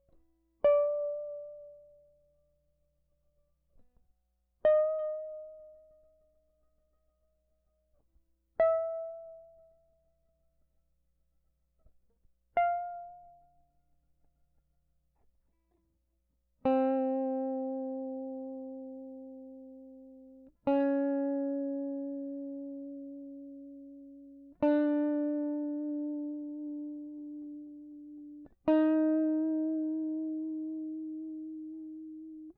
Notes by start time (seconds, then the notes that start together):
0.63 D5
4.65 D#5
8.59 E5
12.56 F5
16.65 C4
20.67 C#4
24.62 D4
28.68 D#4